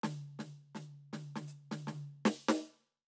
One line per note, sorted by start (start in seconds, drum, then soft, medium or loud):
0.02 snare medium
0.02 high tom medium
0.39 snare soft
0.39 high tom soft
0.75 snare soft
0.75 high tom medium
1.13 snare soft
1.13 high tom medium
1.36 snare soft
1.36 high tom medium
1.47 hi-hat pedal soft
1.71 snare medium
1.71 high tom medium
1.87 snare soft
1.87 high tom medium
2.25 snare loud
2.48 snare loud